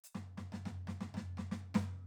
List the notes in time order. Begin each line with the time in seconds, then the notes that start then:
0.04 hi-hat pedal
0.15 snare, floor tom
0.38 snare, floor tom
0.53 snare, floor tom
0.66 snare, floor tom
0.88 snare, floor tom
1.01 snare, floor tom
1.15 snare, floor tom
1.38 snare, floor tom
1.52 snare, floor tom
1.75 snare, floor tom